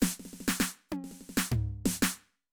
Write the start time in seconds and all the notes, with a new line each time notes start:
0.00 snare, hi-hat pedal
0.19 snare
0.25 snare
0.33 snare
0.40 snare
0.48 snare
0.60 snare
0.89 hi-hat pedal, high tom
1.04 snare
1.11 snare
1.21 snare
1.29 snare
1.37 snare
1.52 floor tom
1.86 snare
2.02 snare